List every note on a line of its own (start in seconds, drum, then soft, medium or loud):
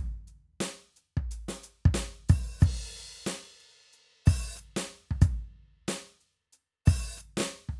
0.28 closed hi-hat soft
0.61 snare loud
0.61 closed hi-hat loud
0.96 closed hi-hat medium
1.17 kick medium
1.31 closed hi-hat loud
1.49 snare loud
1.64 closed hi-hat loud
1.86 kick loud
1.95 snare loud
1.95 closed hi-hat loud
2.29 kick loud
2.29 open hi-hat loud
2.61 kick loud
2.61 hi-hat pedal loud
2.61 crash loud
2.94 closed hi-hat soft
3.27 snare loud
3.27 closed hi-hat loud
3.60 closed hi-hat soft
3.93 closed hi-hat medium
4.26 open hi-hat loud
4.26 kick loud
4.56 hi-hat pedal loud
4.77 snare loud
4.77 closed hi-hat loud
5.11 kick medium
5.22 kick loud
5.22 closed hi-hat loud
5.88 snare loud
5.88 closed hi-hat loud
6.21 closed hi-hat soft
6.53 closed hi-hat medium
6.86 open hi-hat loud
6.86 kick loud
7.18 hi-hat pedal loud
7.38 snare loud
7.40 snare loud
7.69 kick medium